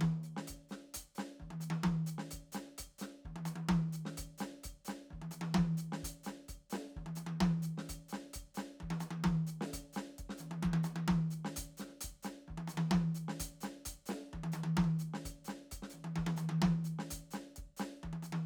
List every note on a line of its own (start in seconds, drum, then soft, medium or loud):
0.01 kick soft
0.01 high tom loud
0.23 hi-hat pedal soft
0.37 snare medium
0.47 closed hi-hat medium
0.47 kick soft
0.69 snare medium
0.69 hi-hat pedal soft
0.94 closed hi-hat loud
0.94 kick soft
1.15 snare medium
1.15 hi-hat pedal medium
1.40 kick soft
1.40 high tom soft
1.51 high tom medium
1.60 hi-hat pedal medium
1.60 high tom soft
1.70 high tom medium
1.84 kick soft
1.84 high tom loud
2.07 hi-hat pedal medium
2.18 snare medium
2.31 closed hi-hat medium
2.31 kick soft
2.52 snare medium
2.52 hi-hat pedal loud
2.66 snare soft
2.78 closed hi-hat medium
2.78 kick soft
2.99 snare medium
2.99 hi-hat pedal medium
3.25 kick soft
3.25 high tom soft
3.36 high tom medium
3.45 hi-hat pedal medium
3.45 high tom medium
3.56 high tom medium
3.69 kick soft
3.69 high tom loud
3.93 hi-hat pedal medium
4.05 snare medium
4.17 closed hi-hat medium
4.17 kick soft
4.38 snare medium
4.38 hi-hat pedal medium
4.64 closed hi-hat medium
4.64 kick soft
4.85 snare medium
4.85 hi-hat pedal medium
5.11 kick soft
5.11 high tom soft
5.22 high tom medium
5.31 hi-hat pedal medium
5.31 high tom medium
5.41 high tom medium
5.55 kick soft
5.55 high tom loud
5.77 hi-hat pedal medium
5.92 snare medium
6.04 closed hi-hat medium
6.04 kick soft
6.24 snare medium
6.24 hi-hat pedal medium
6.48 closed hi-hat medium
6.48 kick soft
6.70 snare medium
6.70 hi-hat pedal medium
6.97 kick soft
6.97 high tom soft
7.06 high tom medium
7.16 hi-hat pedal medium
7.16 high tom medium
7.27 high tom medium
7.41 kick soft
7.41 high tom loud
7.62 hi-hat pedal medium
7.78 snare medium
7.89 closed hi-hat medium
7.89 kick soft
8.09 hi-hat pedal medium
8.13 snare medium
8.34 closed hi-hat medium
8.34 kick soft
8.55 snare medium
8.55 hi-hat pedal medium
8.80 kick soft
8.80 high tom medium
8.91 high tom medium
9.00 hi-hat pedal medium
9.11 high tom medium
9.24 kick soft
9.24 high tom loud
9.47 hi-hat pedal medium
9.61 snare medium
9.73 closed hi-hat medium
9.73 kick soft
9.93 snare medium
9.93 hi-hat pedal medium
10.18 kick soft
10.18 closed hi-hat medium
10.29 snare medium
10.38 hi-hat pedal medium
10.38 high tom soft
10.51 high tom medium
10.63 kick soft
10.63 high tom loud
10.74 high tom loud
10.84 hi-hat pedal medium
10.84 high tom medium
10.96 high tom medium
11.08 kick soft
11.08 high tom loud
11.31 hi-hat pedal medium
11.45 snare medium
11.56 closed hi-hat loud
11.56 kick soft
11.77 snare medium
11.77 hi-hat pedal medium
11.89 snare soft
12.01 closed hi-hat loud
12.01 kick soft
12.23 snare medium
12.23 hi-hat pedal medium
12.48 kick soft
12.48 high tom soft
12.58 high tom medium
12.68 hi-hat pedal medium
12.68 high tom medium
12.77 high tom medium
12.91 kick soft
12.91 high tom loud
13.15 hi-hat pedal medium
13.29 snare medium
13.40 closed hi-hat loud
13.40 kick soft
13.61 snare medium
13.61 hi-hat pedal medium
13.85 closed hi-hat medium
13.85 kick soft
14.06 snare medium
14.06 hi-hat pedal medium
14.33 kick soft
14.33 high tom medium
14.44 high tom medium
14.52 hi-hat pedal medium
14.52 high tom medium
14.64 high tom medium
14.77 kick soft
14.77 high tom loud
14.84 high tom soft
14.99 hi-hat pedal medium
15.14 snare medium
15.25 closed hi-hat medium
15.25 kick soft
15.45 snare medium
15.45 hi-hat pedal medium
15.72 closed hi-hat medium
15.72 kick soft
15.82 snare medium
15.90 hi-hat pedal medium
15.94 high tom soft
16.04 high tom medium
16.16 kick soft
16.16 high tom medium
16.27 high tom loud
16.37 hi-hat pedal medium
16.37 high tom medium
16.49 high tom loud
16.62 kick soft
16.62 high tom loud
16.84 hi-hat pedal medium
16.99 snare medium
17.11 closed hi-hat medium
17.11 kick soft
17.31 snare medium
17.31 hi-hat pedal medium
17.56 kick soft
17.56 closed hi-hat medium
17.77 snare medium
17.77 hi-hat pedal medium
18.03 kick soft
18.03 high tom medium
18.13 high tom medium
18.23 hi-hat pedal medium
18.23 high tom medium
18.33 high tom medium